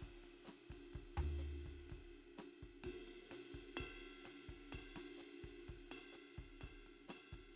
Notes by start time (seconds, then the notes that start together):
0.01 kick, snare, ride
0.07 kick
0.24 ride
0.45 cross-stick, hi-hat pedal, ride
0.70 kick, ride
0.94 kick, ride
1.00 kick
1.17 floor tom, ride
1.39 hi-hat pedal, ride
1.66 kick, ride
1.71 kick
1.90 kick, ride
1.97 kick
2.15 ride
2.38 cross-stick, snare, hi-hat pedal, ride
2.63 kick
2.84 kick, ride
2.91 kick
3.08 ride
3.31 snare, hi-hat pedal, ride
3.54 kick, ride
3.77 kick, ride bell
3.86 kick
4.01 ride
4.25 snare, hi-hat pedal, ride
4.49 kick, ride
4.54 kick
4.73 kick, ride bell
4.79 kick
4.96 cross-stick, ride
5.18 hi-hat pedal, ride
5.44 kick, ride
5.69 kick, ride
5.74 kick
5.91 snare, ride bell
6.13 hi-hat pedal, ride
6.38 kick, ride
6.44 kick
6.61 kick, snare, ride bell
6.69 kick
6.87 ride
6.97 snare
7.08 cross-stick, hi-hat pedal, ride bell
7.33 kick, ride